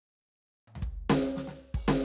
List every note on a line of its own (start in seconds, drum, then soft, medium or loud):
0.67 high tom soft
0.75 floor tom medium
0.82 kick medium
1.10 snare loud
1.37 snare medium
1.47 snare soft
1.74 open hi-hat medium
1.74 kick medium
1.88 snare loud
1.88 hi-hat pedal soft